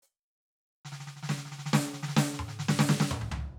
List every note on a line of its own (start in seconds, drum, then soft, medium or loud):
0.00 hi-hat pedal soft
0.85 snare medium
0.92 snare medium
1.00 snare medium
1.07 snare medium
1.16 snare soft
1.23 snare medium
1.29 snare loud
1.37 snare medium
1.45 snare soft
1.51 snare medium
1.59 snare medium
1.66 snare medium
1.73 snare loud
1.80 snare medium
1.88 snare soft
1.93 snare medium
2.03 snare medium
2.08 snare medium
2.17 snare loud
2.33 snare medium
2.39 high tom medium
2.48 snare medium
2.59 snare medium
2.68 snare loud
2.79 snare loud
2.89 snare loud
3.00 snare loud
3.11 high tom loud
3.21 floor tom medium
3.32 floor tom loud